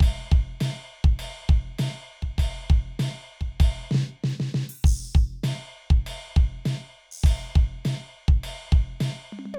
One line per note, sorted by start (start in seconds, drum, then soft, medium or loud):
0.01 kick loud
0.01 ride loud
0.32 kick loud
0.32 snare soft
0.61 snare loud
0.61 ride bell loud
1.05 kick loud
1.05 snare soft
1.20 ride bell loud
1.50 kick loud
1.50 snare soft
1.79 snare loud
1.79 ride bell loud
2.23 kick medium
2.39 kick loud
2.39 ride bell loud
2.71 kick loud
2.71 snare soft
3.00 snare loud
3.00 ride bell loud
3.42 kick medium
3.61 kick loud
3.61 ride bell loud
3.92 snare loud
3.95 snare loud
4.25 snare loud
4.29 hi-hat pedal medium
4.41 snare loud
4.55 snare loud
4.70 open hi-hat medium
4.85 kick loud
4.85 crash loud
5.16 kick loud
5.44 snare loud
5.44 ride loud
5.91 kick loud
5.91 snare soft
6.07 ride bell loud
6.37 kick loud
6.66 snare loud
6.66 ride bell loud
7.12 crash loud
7.24 kick loud
7.24 ride bell loud
7.56 kick loud
7.86 snare loud
7.86 ride bell loud
8.29 kick loud
8.44 ride bell loud
8.73 kick loud
9.01 snare loud
9.01 ride bell loud
9.33 mid tom medium
9.40 high tom medium
9.46 mid tom medium
9.54 high tom loud